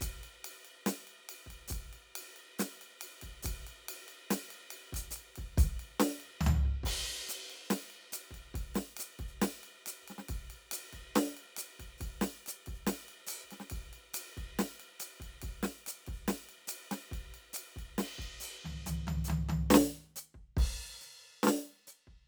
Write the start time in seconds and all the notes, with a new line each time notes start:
0.01 kick, hi-hat pedal, ride
0.23 ride
0.45 ride
0.65 ride
0.86 snare, hi-hat pedal, ride
1.07 ride
1.29 ride
1.46 kick
1.50 ride
1.68 kick, hi-hat pedal
1.72 ride
1.93 ride
2.16 ride
2.36 ride
2.59 snare, hi-hat pedal, ride
2.81 ride
2.99 hi-hat pedal, ride
3.22 kick, ride
3.43 kick, hi-hat pedal, ride
3.67 ride
3.89 ride
4.08 ride
4.31 snare, hi-hat pedal, ride
4.51 ride
4.71 ride
4.93 open hi-hat, kick, ride
5.11 hi-hat pedal
5.16 ride
5.36 kick, ride
5.58 open hi-hat, kick, ride
5.79 ride
6.00 snare, ride
6.20 ride
6.41 floor tom, hi-hat pedal
6.47 floor tom
6.65 kick
6.83 kick, crash, ride
7.29 hi-hat pedal, ride
7.50 ride
7.64 hi-hat pedal
7.70 snare, ride
7.90 ride
8.12 hi-hat pedal, ride
8.31 kick, ride
8.54 kick, ride
8.75 snare, ride
8.97 hi-hat pedal, ride
9.19 kick, ride
9.28 hi-hat pedal
9.42 snare, ride
9.63 ride
9.86 hi-hat pedal, ride
10.02 kick
10.08 snare, ride
10.18 snare
10.29 kick, ride
10.50 ride
10.71 hi-hat pedal, ride
10.93 kick, ride
11.16 snare, ride
11.37 ride
11.57 hi-hat pedal, ride
11.79 kick, ride
11.98 kick, hi-hat pedal, ride
12.21 snare, ride
12.46 hi-hat pedal, ride
12.66 kick, ride
12.75 hi-hat pedal
12.87 snare, ride
13.08 ride
13.27 hi-hat pedal, ride
13.43 kick
13.51 snare, ride
13.60 snare
13.70 kick, ride
13.93 ride
14.14 hi-hat pedal, ride
14.37 kick, ride
14.59 snare, ride
14.80 ride
15.00 hi-hat pedal, ride
15.20 kick, ride
15.42 kick, hi-hat pedal, ride
15.63 snare, ride
15.87 hi-hat pedal, ride
16.07 kick, ride
16.13 hi-hat pedal
16.28 snare, ride
16.49 ride
16.67 hi-hat pedal, ride
16.91 snare, ride
17.12 kick, ride
17.34 ride
17.53 hi-hat pedal, ride
17.76 kick, ride
17.98 snare, ride
18.19 kick, ride
18.40 hi-hat pedal, ride
18.65 floor tom, high tom
18.86 floor tom, hi-hat pedal, high tom
19.07 floor tom, high tom
19.24 hi-hat pedal, high tom
19.30 floor tom
19.49 floor tom, high tom
19.70 snare
19.74 snare
20.16 hi-hat pedal
20.34 kick
20.57 kick, crash
21.01 hi-hat pedal
21.43 snare
21.47 snare
21.87 hi-hat pedal
22.07 kick